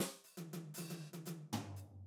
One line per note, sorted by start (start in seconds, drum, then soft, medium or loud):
0.00 snare medium
0.24 hi-hat pedal soft
0.37 high tom medium
0.53 high tom medium
0.74 hi-hat pedal medium
0.74 high tom medium
0.90 high tom medium
1.13 high tom medium
1.26 hi-hat pedal medium
1.26 high tom medium
1.53 floor tom loud
1.77 hi-hat pedal soft